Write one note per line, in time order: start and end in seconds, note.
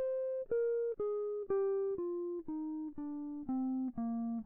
0.00 0.46 C5
0.52 0.95 A#4
1.00 1.47 G#4
1.51 1.98 G4
1.99 2.43 F4
2.49 2.94 D#4
2.99 3.48 D4
3.50 3.92 C4
3.99 4.45 A#3